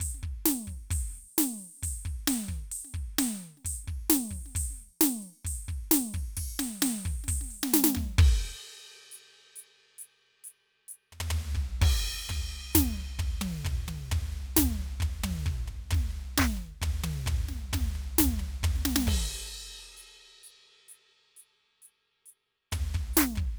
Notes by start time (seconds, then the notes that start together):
0.01 open hi-hat, kick
0.15 snare
0.24 kick, open hi-hat
0.46 open hi-hat, snare
0.68 kick, open hi-hat
0.89 open hi-hat, kick, snare
1.11 snare, open hi-hat
1.39 open hi-hat, snare
1.61 open hi-hat
1.78 snare
1.84 open hi-hat, kick
2.06 kick, open hi-hat
2.28 open hi-hat, snare
2.49 kick, open hi-hat
2.72 open hi-hat
2.85 snare
2.95 kick, open hi-hat
3.19 open hi-hat, snare
3.58 snare
3.65 open hi-hat, kick
3.85 kick, snare, open hi-hat
4.11 open hi-hat, snare
4.31 kick, open hi-hat
4.47 snare
4.56 open hi-hat, kick
4.71 snare
4.78 open hi-hat
5.02 open hi-hat, snare
5.23 open hi-hat
5.45 open hi-hat, kick
5.69 kick, open hi-hat
5.92 open hi-hat, snare
6.14 kick, open hi-hat
6.38 kick, open hi-hat
6.60 open hi-hat, snare
6.83 open hi-hat, snare
7.06 kick, open hi-hat
7.25 snare
7.29 open hi-hat, kick
7.42 snare
7.51 open hi-hat
7.64 snare
7.74 snare
7.85 snare
7.96 kick, snare
8.19 kick, crash
9.12 hi-hat pedal
9.57 hi-hat pedal
9.99 hi-hat pedal
10.45 hi-hat pedal
10.89 hi-hat pedal
11.13 floor tom
11.21 floor tom
11.56 kick, floor tom
11.82 kick, crash
12.02 floor tom
12.30 kick, floor tom
12.74 kick, snare, floor tom, hi-hat pedal
13.20 kick, floor tom
13.31 kick
13.42 high tom
13.65 kick, floor tom
13.77 kick
13.89 mid tom
14.12 kick, floor tom
14.33 floor tom
14.57 kick, snare, floor tom, hi-hat pedal
15.01 kick, floor tom
15.10 kick
15.24 floor tom, high tom
15.47 kick, floor tom
15.68 floor tom
15.91 kick, snare, floor tom
16.11 floor tom
16.38 kick, snare, percussion
16.58 floor tom
16.82 kick, floor tom
16.93 kick
17.04 mid tom
17.27 kick, floor tom
17.49 snare
17.74 kick, snare, floor tom
17.96 floor tom
18.19 kick, snare, floor tom
18.40 floor tom
18.64 kick, floor tom
18.75 kick, snare
18.86 snare
18.97 snare
19.08 kick, crash
19.98 hi-hat pedal
20.44 hi-hat pedal
20.89 hi-hat pedal
21.37 hi-hat pedal
21.83 hi-hat pedal
22.27 hi-hat pedal
22.72 kick, snare, floor tom, hi-hat pedal
22.95 kick, floor tom
23.14 snare, hi-hat pedal
23.18 percussion
23.36 kick, floor tom